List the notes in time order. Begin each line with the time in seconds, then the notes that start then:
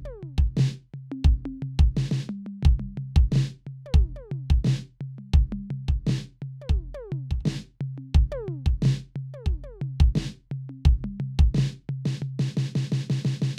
0.07 high tom
0.25 floor tom
0.40 kick
0.49 kick
0.59 snare
0.61 snare
0.96 floor tom
1.14 high tom
1.26 kick
1.47 high tom
1.64 floor tom
1.81 kick
1.99 snare
2.13 snare
2.31 mid tom
2.48 mid tom
2.65 kick, floor tom
2.82 mid tom
2.99 floor tom
3.18 kick
3.34 snare
3.38 snare
3.69 floor tom
3.87 high tom
3.96 kick
4.18 high tom
4.33 floor tom
4.52 kick
4.63 kick, snare
4.69 snare
5.03 floor tom
5.20 mid tom
5.36 kick, floor tom
5.54 mid tom
5.72 floor tom
5.90 kick
6.09 snare
6.11 snare
6.44 floor tom
6.63 high tom
6.71 kick
6.96 high tom
7.14 floor tom
7.33 kick
7.42 kick
7.47 snare
7.49 snare
7.83 floor tom
8.00 high tom
8.16 kick, floor tom
8.33 high tom
8.50 floor tom
8.68 kick
8.84 snare
8.87 snare
9.18 floor tom
9.35 high tom
9.48 kick
9.65 high tom
9.83 floor tom
10.02 kick
10.17 snare
10.19 snare
10.53 floor tom
10.71 high tom
10.87 kick, floor tom
11.06 mid tom
11.22 floor tom
11.41 kick
11.57 snare
11.60 snare
11.91 floor tom
12.08 snare
12.24 floor tom
12.41 snare
12.59 snare
12.77 snare
12.94 snare
13.12 snare
13.27 snare
13.44 snare